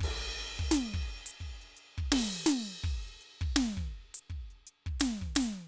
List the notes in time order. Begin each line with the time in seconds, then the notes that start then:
0.01 kick, ride
0.60 kick
0.72 snare
0.94 kick
1.26 closed hi-hat
1.41 kick
1.62 closed hi-hat
1.77 closed hi-hat
1.98 kick
2.12 snare, crash
2.47 snare, hi-hat pedal
2.84 kick
3.07 closed hi-hat
3.21 closed hi-hat
3.42 kick
3.57 snare
3.77 kick
4.15 closed hi-hat
4.30 kick
4.51 closed hi-hat
4.67 closed hi-hat
4.87 kick
5.00 open hi-hat, snare
5.22 kick
5.36 open hi-hat, snare